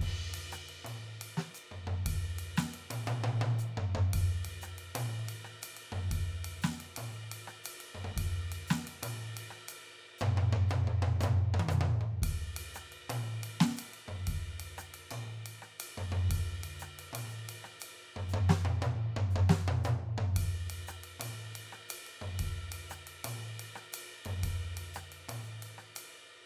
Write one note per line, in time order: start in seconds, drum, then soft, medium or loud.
0.01 kick medium
0.01 ride medium
0.35 ride loud
0.53 cross-stick medium
0.53 hi-hat pedal medium
0.69 ride medium
0.85 mid tom medium
0.85 ride medium
1.22 ride loud
1.38 snare medium
1.55 hi-hat pedal medium
1.55 ride bell medium
1.72 floor tom medium
1.88 floor tom loud
2.06 kick medium
2.06 ride loud
2.24 ride soft
2.39 ride medium
2.58 snare loud
2.58 hi-hat pedal medium
2.74 ride medium
2.91 mid tom loud
2.91 ride loud
3.07 hi-hat pedal soft
3.07 mid tom loud
3.24 mid tom loud
3.42 mid tom loud
3.59 hi-hat pedal medium
3.78 floor tom loud
3.95 floor tom loud
4.14 kick medium
4.14 ride loud
4.45 ride medium
4.62 cross-stick medium
4.62 hi-hat pedal medium
4.79 ride medium
4.96 mid tom loud
4.96 ride loud
5.29 ride medium
5.45 cross-stick medium
5.63 hi-hat pedal medium
5.63 ride loud
5.77 ride medium
5.93 floor tom loud
6.12 kick medium
6.12 ride loud
6.45 ride loud
6.63 snare medium
6.63 hi-hat pedal medium
6.81 ride medium
6.97 mid tom medium
6.97 ride loud
7.12 hi-hat pedal soft
7.32 ride loud
7.48 cross-stick medium
7.65 hi-hat pedal medium
7.65 ride loud
7.81 ride medium
7.95 floor tom medium
8.05 floor tom medium
8.17 kick medium
8.17 ride loud
8.52 ride medium
8.68 snare loud
8.68 hi-hat pedal medium
8.88 ride medium
9.03 mid tom medium
9.03 ride loud
9.17 hi-hat pedal soft
9.38 ride loud
9.51 cross-stick medium
9.69 hi-hat pedal medium
9.69 ride loud
10.19 floor tom loud
10.19 hi-hat pedal medium
10.19 mid tom loud
10.38 mid tom loud
10.53 floor tom loud
10.70 hi-hat pedal soft
10.70 mid tom loud
10.88 floor tom medium
11.03 mid tom loud
11.21 floor tom loud
11.21 hi-hat pedal medium
11.21 mid tom loud
11.55 floor tom loud
11.60 high tom loud
11.69 hi-hat pedal medium
11.69 mid tom loud
11.81 mid tom loud
12.01 floor tom medium
12.23 kick medium
12.23 ride loud
12.57 ride loud
12.75 cross-stick medium
12.75 hi-hat pedal medium
12.93 ride medium
13.10 mid tom loud
13.10 ride loud
13.24 hi-hat pedal soft
13.44 ride loud
13.61 snare loud
13.77 hi-hat pedal medium
13.77 ride loud
13.94 ride medium
14.09 floor tom medium
14.28 kick medium
14.28 ride loud
14.60 ride medium
14.78 cross-stick medium
14.78 hi-hat pedal medium
14.95 ride medium
15.11 mid tom medium
15.11 ride bell medium
15.47 ride medium
15.63 cross-stick medium
15.80 hi-hat pedal medium
15.80 ride loud
15.98 floor tom medium
16.08 kick soft
16.13 floor tom loud
16.31 kick medium
16.31 ride loud
16.64 ride medium
16.80 cross-stick medium
16.80 hi-hat pedal medium
17.00 ride medium
17.14 mid tom medium
17.14 ride loud
17.30 hi-hat pedal soft
17.50 ride loud
17.65 cross-stick medium
17.81 hi-hat pedal medium
17.81 ride loud
18.17 floor tom medium
18.30 hi-hat pedal soft
18.34 floor tom loud
18.50 snare loud
18.66 mid tom loud
18.82 hi-hat pedal soft
18.82 mid tom loud
19.17 floor tom loud
19.31 hi-hat pedal soft
19.36 floor tom loud
19.50 snare loud
19.68 mid tom loud
19.85 hi-hat pedal medium
19.85 mid tom loud
20.18 floor tom loud
20.36 kick medium
20.36 ride loud
20.70 ride loud
20.88 cross-stick medium
20.88 hi-hat pedal medium
21.04 ride medium
21.20 mid tom medium
21.20 ride loud
21.56 ride medium
21.73 cross-stick medium
21.90 hi-hat pedal medium
21.90 ride loud
22.07 ride medium
22.22 floor tom medium
22.40 kick medium
22.40 ride loud
22.73 ride loud
22.90 cross-stick medium
22.90 hi-hat pedal medium
23.08 ride medium
23.25 mid tom medium
23.25 ride loud
23.40 hi-hat pedal soft
23.60 ride medium
23.76 cross-stick medium
23.93 hi-hat pedal medium
23.93 ride loud
24.26 floor tom loud
24.26 ride medium
24.44 kick medium
24.44 ride loud
24.78 ride medium
24.95 cross-stick medium
24.95 hi-hat pedal medium
25.13 ride medium
25.29 mid tom medium
25.29 ride loud
25.44 hi-hat pedal soft
25.63 ride medium
25.79 cross-stick medium
25.96 hi-hat pedal medium
25.96 ride loud